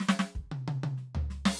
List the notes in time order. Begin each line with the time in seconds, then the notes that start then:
0.00 snare
0.09 snare
0.19 snare
0.35 kick
0.51 high tom
0.68 high tom
0.83 high tom
0.97 snare
1.15 floor tom
1.30 snare
1.45 snare, crash